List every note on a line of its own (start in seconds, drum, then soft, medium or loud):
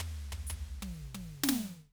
0.00 floor tom medium
0.32 floor tom medium
0.47 floor tom medium
0.47 hi-hat pedal loud
0.82 high tom medium
0.92 hi-hat pedal soft
1.15 high tom medium
1.44 snare medium
1.44 hi-hat pedal medium
1.49 snare loud